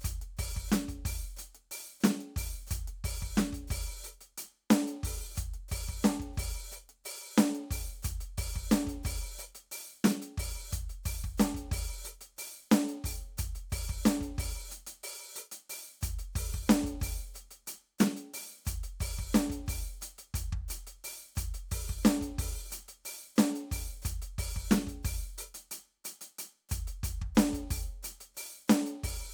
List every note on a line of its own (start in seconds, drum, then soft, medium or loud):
0.01 closed hi-hat loud
0.01 kick medium
0.01 hi-hat pedal medium
0.22 closed hi-hat medium
0.37 open hi-hat loud
0.37 kick medium
0.37 hi-hat pedal soft
0.57 kick medium
0.69 snare loud
0.69 hi-hat pedal medium
0.73 closed hi-hat loud
0.89 closed hi-hat medium
0.89 kick medium
1.05 open hi-hat loud
1.05 kick medium
1.37 closed hi-hat loud
1.37 hi-hat pedal medium
1.55 closed hi-hat medium
1.71 open hi-hat loud
2.01 closed hi-hat loud
2.01 snare loud
2.01 hi-hat pedal medium
2.21 closed hi-hat medium
2.36 open hi-hat loud
2.36 kick medium
2.36 hi-hat pedal soft
2.67 closed hi-hat loud
2.67 kick medium
2.67 hi-hat pedal medium
2.88 closed hi-hat medium
3.04 open hi-hat loud
3.04 kick medium
3.22 kick medium
3.36 closed hi-hat loud
3.36 snare loud
3.36 hi-hat pedal medium
3.53 closed hi-hat medium
3.53 kick medium
3.68 open hi-hat loud
3.68 kick medium
3.68 hi-hat pedal medium
4.04 open hi-hat loud
4.04 hi-hat pedal medium
4.21 closed hi-hat medium
4.38 closed hi-hat loud
4.70 closed hi-hat loud
4.70 snare loud
4.70 hi-hat pedal medium
4.87 closed hi-hat medium
5.03 open hi-hat loud
5.03 kick medium
5.35 closed hi-hat loud
5.35 kick medium
5.35 hi-hat pedal medium
5.54 closed hi-hat medium
5.68 open hi-hat loud
5.68 kick medium
5.68 hi-hat pedal medium
5.89 kick medium
6.03 closed hi-hat loud
6.03 snare loud
6.03 hi-hat pedal medium
6.20 kick soft
6.20 closed hi-hat medium
6.33 hi-hat pedal soft
6.38 open hi-hat loud
6.38 kick medium
6.72 open hi-hat loud
6.72 hi-hat pedal medium
6.89 closed hi-hat medium
7.04 open hi-hat loud
7.04 hi-hat pedal soft
7.38 closed hi-hat loud
7.38 snare loud
7.38 hi-hat pedal medium
7.55 closed hi-hat medium
7.71 open hi-hat loud
7.71 kick medium
8.03 closed hi-hat loud
8.03 kick medium
8.03 hi-hat pedal medium
8.21 closed hi-hat medium
8.38 open hi-hat loud
8.38 kick medium
8.56 kick medium
8.70 closed hi-hat loud
8.70 snare loud
8.70 hi-hat pedal medium
8.87 closed hi-hat medium
8.87 kick medium
9.03 open hi-hat loud
9.03 kick medium
9.03 hi-hat pedal medium
9.38 open hi-hat loud
9.38 hi-hat pedal medium
9.55 closed hi-hat medium
9.72 open hi-hat loud
10.04 open hi-hat loud
10.04 snare loud
10.04 hi-hat pedal medium
10.22 closed hi-hat medium
10.38 open hi-hat loud
10.38 kick medium
10.71 closed hi-hat loud
10.71 kick medium
10.71 hi-hat pedal medium
10.90 closed hi-hat medium
11.04 open hi-hat loud
11.04 kick medium
11.04 hi-hat pedal soft
11.24 kick medium
11.38 closed hi-hat loud
11.38 snare loud
11.38 hi-hat pedal medium
11.54 closed hi-hat medium
11.54 kick soft
11.72 open hi-hat loud
11.72 kick medium
12.04 open hi-hat loud
12.04 hi-hat pedal medium
12.21 closed hi-hat medium
12.37 open hi-hat loud
12.37 hi-hat pedal soft
12.71 closed hi-hat loud
12.71 snare loud
12.71 hi-hat pedal medium
12.88 closed hi-hat medium
13.04 open hi-hat loud
13.04 kick medium
13.04 hi-hat pedal soft
13.38 closed hi-hat loud
13.38 kick medium
13.38 hi-hat pedal medium
13.55 closed hi-hat medium
13.70 open hi-hat loud
13.70 kick medium
13.70 hi-hat pedal soft
13.89 kick medium
14.04 closed hi-hat loud
14.04 snare loud
14.04 hi-hat pedal medium
14.21 closed hi-hat medium
14.21 kick medium
14.35 kick medium
14.35 hi-hat pedal soft
14.39 open hi-hat loud
14.70 closed hi-hat loud
14.70 hi-hat pedal medium
14.87 closed hi-hat loud
15.03 open hi-hat loud
15.35 open hi-hat loud
15.35 hi-hat pedal medium
15.52 closed hi-hat loud
15.70 open hi-hat loud
16.01 closed hi-hat loud
16.01 kick medium
16.01 hi-hat pedal medium
16.19 closed hi-hat medium
16.33 open hi-hat loud
16.33 kick medium
16.33 hi-hat pedal soft
16.54 kick medium
16.67 closed hi-hat loud
16.67 snare loud
16.67 hi-hat pedal medium
16.84 closed hi-hat medium
16.84 kick medium
17.00 open hi-hat loud
17.00 kick medium
17.00 hi-hat pedal soft
17.34 closed hi-hat medium
17.34 hi-hat pedal medium
17.51 closed hi-hat medium
17.67 closed hi-hat loud
17.67 hi-hat pedal soft
17.99 closed hi-hat loud
17.99 snare loud
17.99 hi-hat pedal medium
18.17 closed hi-hat medium
18.34 open hi-hat loud
18.34 hi-hat pedal soft
18.65 closed hi-hat loud
18.65 kick medium
18.65 hi-hat pedal medium
18.83 closed hi-hat medium
19.00 open hi-hat loud
19.00 kick medium
19.00 hi-hat pedal soft
19.19 kick medium
19.33 closed hi-hat loud
19.33 snare loud
19.33 hi-hat pedal medium
19.50 closed hi-hat medium
19.50 kick medium
19.66 open hi-hat loud
19.66 kick medium
19.66 hi-hat pedal soft
20.01 closed hi-hat loud
20.01 hi-hat pedal medium
20.18 closed hi-hat medium
20.34 open hi-hat loud
20.34 kick medium
20.53 kick medium
20.68 closed hi-hat loud
20.68 hi-hat pedal medium
20.87 closed hi-hat medium
21.04 open hi-hat loud
21.36 closed hi-hat loud
21.36 kick medium
21.36 hi-hat pedal medium
21.54 closed hi-hat medium
21.68 open hi-hat loud
21.68 kick medium
21.68 hi-hat pedal soft
21.89 kick medium
22.03 closed hi-hat loud
22.03 snare loud
22.03 hi-hat pedal medium
22.21 closed hi-hat medium
22.21 kick soft
22.39 open hi-hat loud
22.39 kick medium
22.70 closed hi-hat loud
22.70 hi-hat pedal medium
22.88 closed hi-hat medium
23.04 open hi-hat loud
23.04 hi-hat pedal soft
23.36 closed hi-hat loud
23.36 snare loud
23.36 hi-hat pedal medium
23.55 closed hi-hat medium
23.70 open hi-hat loud
23.70 kick medium
23.70 hi-hat pedal soft
24.02 closed hi-hat loud
24.02 kick medium
24.02 hi-hat pedal medium
24.22 closed hi-hat medium
24.38 open hi-hat loud
24.38 kick medium
24.56 kick medium
24.70 closed hi-hat loud
24.70 snare loud
24.70 hi-hat pedal medium
24.87 closed hi-hat medium
24.87 kick soft
25.03 open hi-hat loud
25.03 kick medium
25.03 hi-hat pedal soft
25.38 open hi-hat loud
25.38 hi-hat pedal medium
25.54 closed hi-hat loud
25.71 closed hi-hat loud
26.05 closed hi-hat loud
26.05 hi-hat pedal medium
26.21 closed hi-hat medium
26.39 closed hi-hat loud
26.69 closed hi-hat loud
26.69 kick medium
26.69 hi-hat pedal medium
26.87 closed hi-hat medium
27.03 open hi-hat loud
27.03 kick medium
27.22 kick medium
27.35 closed hi-hat loud
27.35 snare loud
27.35 hi-hat pedal medium
27.53 closed hi-hat medium
27.53 kick medium
27.70 open hi-hat loud
27.70 kick medium
27.70 hi-hat pedal soft
28.03 closed hi-hat loud
28.03 hi-hat pedal medium
28.21 closed hi-hat medium
28.35 open hi-hat loud
28.35 hi-hat pedal soft
28.68 closed hi-hat loud
28.68 snare loud
28.68 hi-hat pedal medium
28.86 closed hi-hat medium
29.04 open hi-hat loud
29.04 kick medium